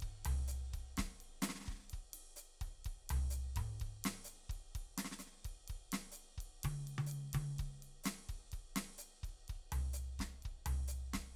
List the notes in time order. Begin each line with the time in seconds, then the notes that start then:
0.01 kick, ride
0.08 kick
0.26 floor tom, ride
0.48 hi-hat pedal, ride
0.74 kick, ride
0.79 kick
0.98 kick, snare, ride
1.05 kick
1.21 ride
1.43 snare, hi-hat pedal, ride
1.50 snare
1.56 snare
1.61 snare
1.65 kick, snare
1.71 kick, snare
1.75 snare
1.79 snare
1.83 snare
1.86 snare
1.88 snare, ride
1.91 snare
1.94 kick, snare
1.99 kick
2.14 ride
2.37 hi-hat pedal, ride
2.62 kick, ride, floor tom
2.68 kick
2.85 kick, ride
3.10 floor tom, ride
3.31 hi-hat pedal, ride
3.57 kick, mid tom, ride
3.62 kick
3.81 kick, ride
3.87 kick
4.05 snare, ride
4.25 hi-hat pedal, ride
4.50 kick, ride
4.56 kick
4.76 kick, ride
4.98 snare, ride
5.05 snare
5.12 snare
5.20 snare, hi-hat pedal, ride
5.27 snare
5.33 snare
5.37 snare
5.42 kick, snare, ride
5.46 snare
5.51 kick, snare
5.69 kick, ride
5.76 kick
5.93 snare, ride
6.12 hi-hat pedal
6.17 ride
6.38 kick, ride
6.64 kick, high tom, ride
6.71 kick
6.88 ride
6.99 high tom
7.07 hi-hat pedal
7.12 ride
7.34 kick, high tom, ride
7.40 kick
7.59 kick, ride
7.66 kick
7.83 ride
8.04 snare, hi-hat pedal, ride
8.30 kick, snare, ride
8.35 kick
8.53 kick, ride
8.59 kick
8.77 snare, ride
8.99 hi-hat pedal, ride
9.24 kick, ride
9.29 kick
9.49 kick, ride
9.56 kick
9.73 floor tom, ride
9.94 hi-hat pedal, ride
10.20 kick, snare, ride
10.43 kick, ride
10.67 floor tom, ride
10.88 hi-hat pedal, ride
11.14 kick, snare, ride
11.19 kick